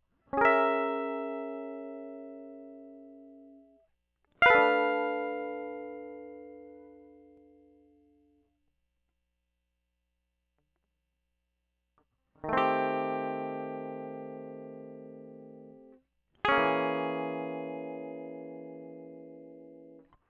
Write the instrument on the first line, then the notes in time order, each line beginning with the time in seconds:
electric guitar
0.33 C#4
0.38 G#4 A#4
0.45 E5
4.42 B4 F5
4.50 A4
4.55 D4
12.45 D#3
12.49 A3
12.53 C4
12.58 G4
16.45 C#4 G#4
16.52 A#3
16.59 E3